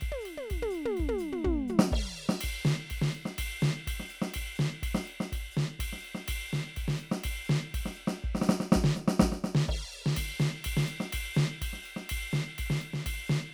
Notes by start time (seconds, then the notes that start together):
0.01 kick, ride bell
0.08 kick, high tom
0.21 hi-hat pedal
0.25 ride
0.37 high tom
0.50 kick, ride bell
0.57 kick
0.62 mid tom
0.71 hi-hat pedal
0.75 ride bell
0.85 mid tom
0.97 kick, ride bell
1.06 kick, mid tom
1.19 hi-hat pedal, ride
1.32 floor tom
1.44 kick, floor tom
1.53 kick
1.68 floor tom, hi-hat pedal
1.79 snare
1.92 kick, crash
1.97 kick
2.04 kick
2.17 hi-hat pedal
2.29 snare
2.41 kick, ride bell
2.50 kick
2.64 snare, hi-hat pedal
2.90 kick, ride bell
3.02 snare
3.11 hi-hat pedal, ride
3.26 snare
3.38 kick, ride bell
3.44 kick
3.60 snare, hi-hat pedal
3.87 kick, ride bell
3.93 kick
4.00 snare
4.09 hi-hat pedal, ride
4.22 snare
4.34 kick, ride bell
4.41 kick
4.55 hi-hat pedal
4.59 snare
4.83 kick, ride bell
4.89 kick
4.95 snare
5.03 hi-hat pedal
5.07 ride
5.20 snare
5.32 kick, ride bell
5.38 kick
5.52 hi-hat pedal
5.57 snare
5.80 kick, ride bell
5.86 kick
5.93 snare
5.99 hi-hat pedal
6.04 ride
6.15 snare
6.28 kick, ride
6.48 hi-hat pedal
6.53 snare
6.77 kick, ride
6.83 kick
6.88 snare
6.96 hi-hat pedal, ride
7.12 snare
7.24 kick, ride bell
7.31 kick, ride
7.45 hi-hat pedal
7.50 snare
7.74 kick, ride
7.80 kick
7.86 snare
7.94 hi-hat pedal
8.08 snare
8.24 kick, snare
8.31 kick
8.35 snare
8.42 snare, hi-hat pedal
8.49 snare
8.60 snare
8.72 kick, snare
8.82 kick, snare
8.95 snare, hi-hat pedal
9.08 snare
9.20 kick, snare
9.28 kick
9.32 snare
9.44 snare, hi-hat pedal
9.55 snare
9.68 kick, crash
9.75 kick
9.92 hi-hat pedal
10.06 snare
10.17 kick, ride bell
10.23 kick
10.39 snare, hi-hat pedal
10.64 kick, ride
10.77 snare
10.87 hi-hat pedal, ride
11.00 snare
11.13 kick, ride bell
11.20 kick
11.34 snare, hi-hat pedal
11.56 hi-hat pedal
11.62 kick, ride bell
11.68 kick
11.73 snare
11.83 hi-hat pedal, ride
11.96 snare
12.09 kick, ride bell
12.18 kick
12.31 snare, hi-hat pedal
12.58 kick, ride bell
12.70 snare
12.78 hi-hat pedal, ride
12.94 snare
13.06 kick, ride bell
13.12 kick
13.26 snare, hi-hat pedal